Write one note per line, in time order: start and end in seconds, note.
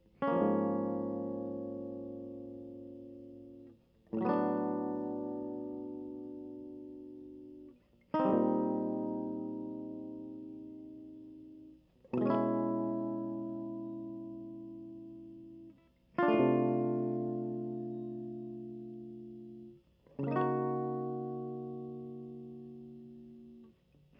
0.23 3.74 C#4
0.28 3.80 A#3
0.32 3.77 F3
0.43 3.81 G#2
4.15 7.77 A2
4.22 7.74 F#3
4.22 7.81 B3
4.29 7.74 D4
8.14 11.85 D#4
8.20 11.79 C4
8.26 11.72 G3
8.32 11.75 A#2
8.32 8.37 D3
12.15 15.81 B2
12.20 12.29 E3
12.20 15.78 G#3
12.26 15.80 C#4
12.26 12.87 E4
12.30 15.74 E4
12.35 12.42 A#4
16.19 19.82 F4
16.23 19.72 D4
16.29 19.77 A3
16.36 16.42 E3
16.41 19.79 C3
16.41 16.97 E4
20.20 23.52 C#3
20.28 23.74 A#3
20.28 23.74 D#4
20.36 23.72 F#4
20.42 20.47 C5